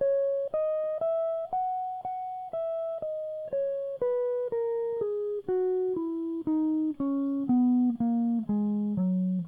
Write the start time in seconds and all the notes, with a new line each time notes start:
0.01 C#5
0.54 D#5
1.01 E5
1.53 F#5
2.05 F#5
2.53 E5
3.02 D#5
3.53 C#5
4.02 B4
4.52 A#4
5.01 G#4
5.49 F#4
5.96 E4
6.47 D#4
7.00 C#4
7.50 B3
8.01 A#3
8.50 G#3
8.98 F#3